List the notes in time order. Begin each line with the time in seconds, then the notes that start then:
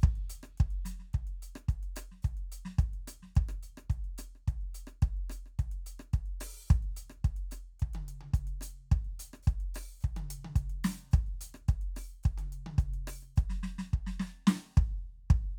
0.01 kick, closed hi-hat, hi-hat pedal
0.07 snare
0.16 closed hi-hat
0.30 closed hi-hat
0.44 cross-stick
0.58 kick, closed hi-hat
0.71 closed hi-hat
0.86 closed hi-hat, snare
1.00 snare
1.14 kick, closed hi-hat
1.28 closed hi-hat
1.43 closed hi-hat
1.56 cross-stick
1.69 kick, closed hi-hat
1.84 closed hi-hat
1.97 closed hi-hat, cross-stick
2.12 snare
2.23 kick, closed hi-hat, hi-hat pedal
2.33 snare
2.38 closed hi-hat
2.53 closed hi-hat
2.66 snare
2.79 kick, closed hi-hat
2.94 closed hi-hat
3.08 closed hi-hat, kick, cross-stick
3.23 snare
3.36 kick, closed hi-hat
3.50 cross-stick, closed hi-hat
3.64 closed hi-hat
3.78 cross-stick
3.91 kick, closed hi-hat
4.05 closed hi-hat
4.19 closed hi-hat, cross-stick
4.36 cross-stick
4.48 kick, closed hi-hat
4.62 closed hi-hat
4.75 closed hi-hat
4.88 cross-stick
5.03 kick, closed hi-hat
5.18 closed hi-hat
5.31 closed hi-hat, cross-stick
5.47 cross-stick
5.60 kick, closed hi-hat
5.72 closed hi-hat
5.87 closed hi-hat
6.00 cross-stick
6.14 kick, closed hi-hat
6.27 closed hi-hat
6.41 open hi-hat, cross-stick
6.69 kick, closed hi-hat, hi-hat pedal
6.83 closed hi-hat
6.97 closed hi-hat
7.11 cross-stick
7.25 kick, closed hi-hat
7.37 closed hi-hat
7.52 closed hi-hat, cross-stick
7.80 kick, closed hi-hat
7.94 closed hi-hat, high tom
8.09 kick, closed hi-hat
8.22 high tom
8.34 kick, closed hi-hat
8.48 closed hi-hat
8.62 closed hi-hat, cross-stick
8.92 kick, closed hi-hat
9.05 closed hi-hat
9.20 closed hi-hat
9.34 cross-stick
9.44 hi-hat pedal
9.48 kick, closed hi-hat
9.61 closed hi-hat
9.75 open hi-hat, cross-stick
10.01 kick, closed hi-hat, hi-hat pedal
10.17 closed hi-hat, high tom
10.29 kick, closed hi-hat
10.45 high tom
10.56 kick, closed hi-hat
10.70 closed hi-hat
10.85 open hi-hat, snare
11.12 kick, closed hi-hat, hi-hat pedal
11.27 closed hi-hat
11.42 closed hi-hat
11.55 cross-stick
11.69 kick, closed hi-hat
11.82 closed hi-hat
11.97 open hi-hat, cross-stick
12.24 kick, closed hi-hat, hi-hat pedal
12.39 closed hi-hat, high tom
12.53 closed hi-hat
12.67 high tom
12.79 kick, closed hi-hat
12.94 closed hi-hat
13.08 open hi-hat, cross-stick
13.23 cross-stick
13.37 kick, closed hi-hat, hi-hat pedal
13.51 snare
13.64 snare
13.79 snare
13.94 kick
14.07 snare
14.20 snare
14.48 snare
14.78 kick
14.99 kick
15.31 kick